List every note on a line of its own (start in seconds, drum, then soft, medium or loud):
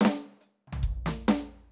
0.01 snare loud
0.05 snare loud
0.40 hi-hat pedal medium
0.67 high tom soft
0.73 floor tom loud
0.83 kick medium
1.06 snare loud
1.28 snare loud